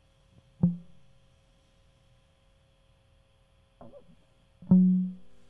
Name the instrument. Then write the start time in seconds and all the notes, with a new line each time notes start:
electric guitar
0.65 F3
4.73 F#3